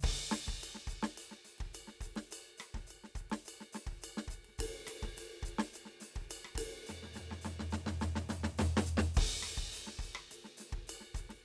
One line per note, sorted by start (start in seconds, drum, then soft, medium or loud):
0.01 kick medium
0.01 hi-hat pedal soft
0.01 ride loud
0.30 snare medium
0.30 hi-hat pedal medium
0.47 kick medium
0.47 snare soft
0.60 hi-hat pedal soft
0.60 ride bell medium
0.75 snare soft
0.87 kick soft
0.87 hi-hat pedal medium
0.87 ride soft
1.03 snare medium
1.03 ride soft
1.18 hi-hat pedal medium
1.18 ride bell medium
1.32 snare soft
1.45 snare soft
1.45 hi-hat pedal soft
1.45 ride soft
1.59 kick soft
1.59 ride soft
1.74 hi-hat pedal soft
1.74 ride bell medium
1.88 snare soft
2.01 kick soft
2.01 hi-hat pedal medium
2.01 ride soft
2.16 snare medium
2.16 ride soft
2.31 hi-hat pedal medium
2.31 ride bell medium
2.58 cross-stick medium
2.58 hi-hat pedal medium
2.58 ride bell soft
2.75 kick soft
2.75 snare soft
2.87 hi-hat pedal medium
2.87 ride bell soft
3.04 snare soft
3.15 kick soft
3.15 hi-hat pedal soft
3.15 ride soft
3.30 snare medium
3.30 ride soft
3.46 hi-hat pedal medium
3.46 ride bell medium
3.61 snare soft
3.73 snare soft
3.73 hi-hat pedal medium
3.73 ride soft
3.87 kick soft
3.87 ride soft
4.02 hi-hat pedal soft
4.02 ride bell medium
4.18 snare medium
4.28 kick soft
4.28 hi-hat pedal medium
4.28 ride soft
4.45 snare soft
4.45 ride soft
4.58 kick soft
4.58 hi-hat pedal soft
4.58 ride loud
4.87 cross-stick medium
4.87 hi-hat pedal medium
4.87 ride medium
5.03 kick soft
5.03 snare soft
5.17 hi-hat pedal medium
5.17 ride medium
5.43 kick soft
5.43 hi-hat pedal medium
5.47 ride soft
5.59 snare medium
5.59 ride soft
5.74 hi-hat pedal medium
5.74 ride bell medium
5.86 snare soft
6.01 snare soft
6.01 hi-hat pedal medium
6.01 ride soft
6.16 kick soft
6.16 ride soft
6.30 hi-hat pedal medium
6.30 ride bell medium
6.45 cross-stick medium
6.56 kick soft
6.56 hi-hat pedal medium
6.56 ride loud
6.87 snare soft
6.87 floor tom soft
6.87 hi-hat pedal medium
7.03 snare soft
7.03 floor tom soft
7.14 snare soft
7.14 hi-hat pedal soft
7.18 floor tom soft
7.31 snare soft
7.31 floor tom soft
7.42 snare soft
7.42 floor tom medium
7.42 hi-hat pedal medium
7.60 snare soft
7.60 floor tom medium
7.71 snare medium
7.71 floor tom medium
7.71 hi-hat pedal soft
7.87 snare medium
7.87 floor tom medium
8.01 snare medium
8.01 floor tom medium
8.01 hi-hat pedal soft
8.16 snare medium
8.16 floor tom medium
8.29 snare medium
8.29 floor tom medium
8.29 hi-hat pedal medium
8.44 snare medium
8.44 floor tom medium
8.58 snare medium
8.58 floor tom loud
8.58 hi-hat pedal medium
8.77 snare medium
8.77 floor tom loud
8.86 hi-hat pedal medium
8.98 snare medium
8.98 floor tom medium
9.15 kick loud
9.15 hi-hat pedal medium
9.15 ride loud
9.43 cross-stick medium
9.43 hi-hat pedal soft
9.58 kick medium
9.72 hi-hat pedal medium
9.72 ride soft
9.87 snare soft
9.99 kick soft
9.99 hi-hat pedal medium
9.99 ride bell soft
10.14 cross-stick medium
10.14 ride soft
10.31 hi-hat pedal medium
10.31 ride medium
10.45 snare soft
10.58 snare soft
10.58 hi-hat pedal medium
10.58 ride soft
10.70 kick soft
10.70 snare soft
10.70 ride soft
10.87 hi-hat pedal soft
10.87 ride bell medium
11.01 snare soft
11.15 kick soft
11.15 hi-hat pedal medium
11.15 ride soft
11.30 snare soft
11.30 ride soft